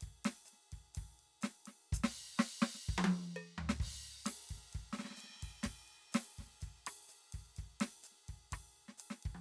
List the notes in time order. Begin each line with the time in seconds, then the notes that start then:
0.01 kick, hi-hat pedal, ride
0.08 kick
0.25 snare, ride
0.46 hi-hat pedal, ride
0.53 snare
0.73 kick, ride
0.95 kick, hi-hat pedal, ride
1.03 kick
1.20 ride
1.42 snare, hi-hat pedal, ride
1.66 snare, ride
1.93 kick, hi-hat pedal
2.04 snare, crash
2.38 snare, crash
2.62 snare, crash
2.75 snare
2.89 kick
2.96 kick, high tom
3.05 high tom
3.37 percussion
3.58 kick, floor tom
3.70 snare
3.81 kick, crash
3.87 kick
4.25 snare, hi-hat pedal, ride
4.50 kick, ride
4.56 kick, snare
4.72 kick, hi-hat pedal, ride
4.81 kick
4.93 snare, ride
5.00 snare
5.05 snare
5.11 snare
5.17 snare, hi-hat pedal
5.21 snare, ride
5.30 snare
5.36 snare
5.41 kick, snare, ride
5.49 kick
5.64 kick, snare, hi-hat pedal, ride
5.71 kick
5.88 ride
6.13 snare, hi-hat pedal, ride
6.39 kick, snare, ride
6.47 snare
6.51 snare
6.54 snare
6.61 kick, hi-hat pedal, ride
6.68 kick
6.87 cross-stick, ride
7.09 hi-hat pedal
7.33 kick, ride
7.40 kick
7.57 kick, hi-hat pedal, ride
7.64 kick
7.81 snare, ride
8.04 hi-hat pedal, ride
8.12 snare
8.29 kick, ride
8.34 kick
8.51 kick, cross-stick, hi-hat pedal, ride
8.89 snare
8.98 hi-hat pedal, ride
9.11 snare
9.23 kick, ride
9.35 high tom